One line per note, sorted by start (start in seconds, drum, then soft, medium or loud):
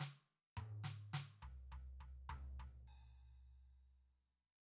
0.00 snare soft
0.00 hi-hat pedal soft
0.57 high tom medium
0.84 snare soft
1.13 snare medium
1.42 floor tom soft
1.72 floor tom soft
2.00 floor tom soft
2.29 floor tom medium
2.60 floor tom soft
2.88 crash soft